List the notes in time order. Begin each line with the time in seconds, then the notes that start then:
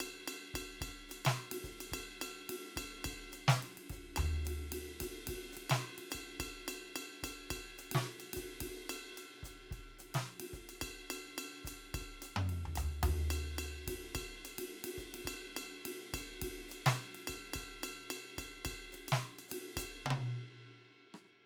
0.01 hi-hat pedal, ride bell
0.28 ride bell
0.55 kick, hi-hat pedal, ride bell
0.82 kick, ride bell
0.91 kick
1.09 hi-hat pedal, ride bell
1.26 snare, ride bell
1.52 ride
1.65 kick, hi-hat pedal
1.81 ride bell
1.93 kick, ride bell
2.22 hi-hat pedal, ride bell
2.50 ride
2.77 kick, hi-hat pedal, ride bell
3.05 kick, ride bell
3.12 kick
3.33 hi-hat pedal, ride bell
3.49 snare
3.63 ride
3.78 ride
3.90 kick, hi-hat pedal, ride, floor tom
3.97 kick
4.17 kick, floor tom, ride bell
4.45 hi-hat pedal, ride
4.73 ride
5.01 kick, hi-hat pedal, ride
5.28 kick, ride
5.35 kick
5.53 hi-hat pedal
5.58 ride
5.70 snare, ride bell
5.99 ride
6.11 hi-hat pedal, ride bell
6.15 kick
6.40 kick, ride bell
6.69 hi-hat pedal, ride bell
6.97 ride bell
7.24 kick, hi-hat pedal, ride bell
7.51 kick, ride bell
7.79 hi-hat pedal, ride bell
7.92 snare, ride
8.21 ride bell
8.34 kick, hi-hat pedal, ride
8.61 kick, ride
8.90 hi-hat pedal, ride bell
9.18 ride bell
9.44 kick, hi-hat pedal, ride bell
9.72 kick, ride bell
9.80 kick
9.99 hi-hat pedal, ride
10.15 snare, ride bell
10.41 ride
10.54 kick, hi-hat pedal
10.70 ride bell
10.82 kick, ride bell
11.11 hi-hat pedal, ride bell
11.39 ride bell
11.65 kick, hi-hat pedal, ride bell
11.95 kick, cross-stick, ride bell
12.01 kick
12.05 kick
12.23 hi-hat pedal, ride bell
12.37 mid tom
12.50 ride
12.66 floor tom
12.76 hi-hat pedal, ride bell, floor tom
13.04 ride, floor tom
13.31 hi-hat pedal, ride bell
13.59 ride bell
13.88 kick, hi-hat pedal, ride
14.16 kick, ride bell
14.22 kick
14.45 hi-hat pedal, ride bell
14.59 ride
14.85 ride
14.98 kick, hi-hat pedal
15.15 ride
15.26 kick, ride bell
15.57 hi-hat pedal, ride bell
15.86 ride
16.14 kick, hi-hat pedal, ride bell
16.20 kick
16.22 kick
16.42 kick, ride
16.69 hi-hat pedal, ride bell
16.87 snare, ride bell
17.15 ride
17.28 kick, hi-hat pedal, ride bell
17.54 kick, ride bell
17.83 hi-hat pedal, ride bell
18.11 ride bell
18.39 kick, hi-hat pedal, ride bell
18.66 kick, ride bell
18.72 kick
18.93 hi-hat pedal, ride
19.09 snare, ride bell
19.39 ride bell
19.49 hi-hat pedal, ride
19.77 kick, hi-hat pedal, ride bell
19.83 kick
20.07 high tom
20.11 high tom
21.15 cross-stick
21.25 cross-stick